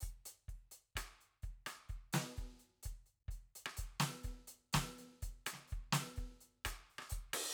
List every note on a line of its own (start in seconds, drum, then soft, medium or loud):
0.00 open hi-hat medium
0.00 kick soft
0.00 hi-hat pedal soft
0.25 closed hi-hat medium
0.48 kick soft
0.48 closed hi-hat soft
0.71 closed hi-hat soft
0.95 closed hi-hat medium
0.95 kick soft
0.95 cross-stick medium
1.21 closed hi-hat soft
1.42 closed hi-hat soft
1.42 kick soft
1.66 open hi-hat medium
1.66 cross-stick medium
1.89 closed hi-hat soft
1.89 kick soft
2.13 closed hi-hat medium
2.13 snare loud
2.36 closed hi-hat soft
2.36 kick soft
2.36 snare soft
2.44 snare soft
2.47 snare soft
2.59 closed hi-hat soft
2.83 closed hi-hat medium
2.83 kick soft
3.06 closed hi-hat soft
3.28 closed hi-hat soft
3.28 kick soft
3.55 closed hi-hat soft
3.66 cross-stick medium
3.77 closed hi-hat medium
3.77 kick soft
4.00 closed hi-hat medium
4.00 snare medium
4.05 snare soft
4.23 closed hi-hat soft
4.23 kick soft
4.23 snare soft
4.30 snare soft
4.47 closed hi-hat soft
4.73 closed hi-hat medium
4.73 kick soft
4.73 snare loud
4.78 cross-stick soft
4.98 closed hi-hat soft
4.98 snare soft
5.04 snare soft
5.22 closed hi-hat soft
5.22 kick soft
5.46 closed hi-hat medium
5.46 cross-stick medium
5.53 snare soft
5.67 closed hi-hat soft
5.67 hi-hat pedal soft
5.72 kick soft
5.92 closed hi-hat medium
5.92 snare medium
5.99 snare soft
6.16 closed hi-hat soft
6.16 kick soft
6.20 snare soft
6.40 closed hi-hat soft
6.65 open hi-hat medium
6.65 kick soft
6.65 cross-stick medium
6.65 hi-hat pedal soft
6.90 open hi-hat soft
6.98 cross-stick medium
7.02 cross-stick soft
7.09 open hi-hat medium
7.09 kick soft
7.09 hi-hat pedal soft
7.33 cross-stick medium
7.33 crash medium